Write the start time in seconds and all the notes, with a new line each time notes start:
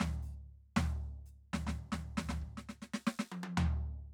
0.00 snare, floor tom
0.22 hi-hat pedal
0.76 snare, floor tom
1.26 hi-hat pedal
1.53 snare, floor tom
1.67 snare, floor tom
1.92 snare, floor tom
2.17 snare, floor tom
2.29 snare, floor tom
2.41 kick
2.57 snare
2.69 snare
2.82 snare
2.94 snare
3.07 snare
3.19 snare
3.31 closed hi-hat, high tom
3.43 high tom
3.57 floor tom